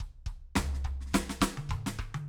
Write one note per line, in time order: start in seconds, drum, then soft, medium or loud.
0.00 kick soft
0.00 floor tom medium
0.26 kick medium
0.26 floor tom soft
0.55 kick medium
0.55 snare loud
0.55 floor tom loud
0.74 snare soft
0.84 kick soft
0.84 floor tom medium
1.01 snare soft
1.06 snare soft
1.10 kick soft
1.10 snare soft
1.14 snare loud
1.29 snare medium
1.41 kick medium
1.41 snare loud
1.57 high tom loud
1.69 kick soft
1.69 mid tom loud
1.86 snare loud
1.98 kick medium
1.98 cross-stick medium
2.14 high tom loud